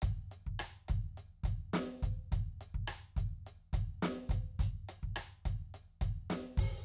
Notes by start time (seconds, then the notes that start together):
0.03 kick, closed hi-hat
0.31 closed hi-hat
0.46 kick
0.59 cross-stick, closed hi-hat
0.88 kick, closed hi-hat
1.17 closed hi-hat
1.43 kick, closed hi-hat
1.73 snare, closed hi-hat
2.02 kick, closed hi-hat
2.32 kick, closed hi-hat
2.61 closed hi-hat
2.74 kick
2.87 cross-stick, closed hi-hat
3.16 kick, closed hi-hat
3.46 closed hi-hat
3.73 kick, closed hi-hat
4.02 snare, closed hi-hat
4.29 kick, closed hi-hat
4.59 closed hi-hat, kick
4.89 closed hi-hat
5.03 kick
5.16 cross-stick, closed hi-hat
5.45 kick, closed hi-hat
5.51 kick
5.74 closed hi-hat
6.01 kick, closed hi-hat
6.30 snare, closed hi-hat
6.57 kick, open hi-hat